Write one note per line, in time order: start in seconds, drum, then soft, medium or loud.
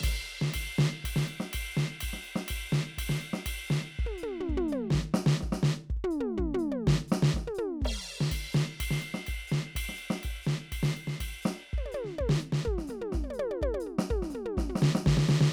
0.01 kick medium
0.01 snare soft
0.01 ride loud
0.13 kick soft
0.25 hi-hat pedal soft
0.25 ride soft
0.42 snare medium
0.54 kick soft
0.54 ride loud
0.61 kick soft
0.75 hi-hat pedal medium
0.79 snare loud
1.05 kick soft
1.05 ride loud
1.16 snare loud
1.23 hi-hat pedal medium
1.28 ride soft
1.40 snare medium
1.53 kick soft
1.53 ride loud
1.72 hi-hat pedal medium
1.77 snare loud
2.01 kick soft
2.01 ride loud
2.09 kick soft
2.14 snare soft
2.22 hi-hat pedal medium
2.22 ride soft
2.36 snare medium
2.48 kick soft
2.48 ride loud
2.56 kick soft
2.69 snare loud
2.69 hi-hat pedal medium
2.98 kick soft
2.98 ride loud
3.04 kick soft
3.10 snare medium
3.16 hi-hat pedal medium
3.21 ride soft
3.34 snare medium
3.46 kick soft
3.46 ride bell loud
3.66 hi-hat pedal medium
3.70 snare loud
3.82 snare soft
3.99 kick soft
4.05 kick soft
4.05 mid tom medium
4.18 hi-hat pedal medium
4.23 mid tom loud
4.40 floor tom loud
4.49 kick soft
4.56 kick soft
4.56 floor tom loud
4.69 hi-hat pedal medium
4.69 high tom loud
4.91 kick soft
4.91 snare loud
5.00 kick soft
5.14 snare loud
5.14 hi-hat pedal medium
5.27 snare loud
5.41 kick soft
5.41 snare soft
5.53 snare medium
5.63 snare loud
5.63 hi-hat pedal medium
5.90 kick soft
5.97 kick soft
6.04 floor tom loud
6.11 hi-hat pedal medium
6.20 mid tom loud
6.37 kick soft
6.37 floor tom loud
6.46 kick soft
6.54 floor tom loud
6.59 hi-hat pedal medium
6.72 high tom medium
6.87 kick soft
6.87 snare loud
7.04 snare soft
7.08 snare loud
7.08 hi-hat pedal medium
7.23 snare loud
7.34 kick soft
7.34 snare soft
7.40 kick soft
7.47 mid tom loud
7.55 hi-hat pedal medium
7.55 mid tom loud
7.81 kick soft
7.81 snare soft
7.85 kick soft
7.85 crash loud
7.93 kick soft
8.02 hi-hat pedal medium
8.21 snare loud
8.32 kick soft
8.32 ride bell loud
8.52 snare loud
8.52 hi-hat pedal medium
8.73 hi-hat pedal soft
8.80 kick soft
8.80 ride bell loud
8.91 snare medium
9.00 hi-hat pedal medium
9.00 ride soft
9.14 snare medium
9.20 hi-hat pedal soft
9.27 kick soft
9.27 ride bell medium
9.48 hi-hat pedal medium
9.52 snare loud
9.76 kick soft
9.76 ride bell loud
9.89 snare soft
9.96 hi-hat pedal medium
9.96 ride soft
10.10 snare medium
10.23 kick soft
10.23 ride bell medium
10.43 snare loud
10.43 hi-hat pedal medium
10.72 kick soft
10.72 ride bell loud
10.83 snare loud
10.91 hi-hat pedal medium
10.97 ride soft
11.08 snare medium
11.20 kick soft
11.20 ride bell loud
11.26 kick soft
11.42 snare medium
11.42 hi-hat pedal medium
11.73 kick soft
11.78 kick soft
11.78 high tom medium
11.86 high tom medium
11.92 hi-hat pedal medium
11.92 high tom loud
12.05 snare soft
12.18 kick soft
12.18 high tom loud
12.27 kick soft
12.27 snare loud
12.40 hi-hat pedal medium
12.53 snare medium
12.65 kick soft
12.65 mid tom loud
12.74 kick soft
12.79 snare soft
12.88 snare soft
12.88 hi-hat pedal medium
12.88 mid tom medium
13.01 mid tom loud
13.13 kick soft
13.13 snare soft
13.21 kick soft
13.21 high tom medium
13.30 hi-hat pedal medium
13.30 high tom medium
13.39 high tom loud
13.51 high tom medium
13.62 kick soft
13.62 high tom loud
13.68 kick soft
13.74 high tom loud
13.80 hi-hat pedal medium
13.86 mid tom medium
13.99 snare medium
14.10 kick soft
14.10 mid tom loud
14.18 kick soft
14.23 snare soft
14.30 snare soft
14.30 hi-hat pedal medium
14.34 mid tom medium
14.46 mid tom loud
14.57 kick soft
14.57 snare medium
14.63 kick soft
14.69 floor tom medium
14.76 snare medium
14.76 hi-hat pedal medium
14.82 snare loud
14.95 snare medium
15.06 kick soft
15.06 snare loud
15.14 kick soft
15.14 snare loud
15.28 snare loud
15.28 hi-hat pedal medium
15.41 snare loud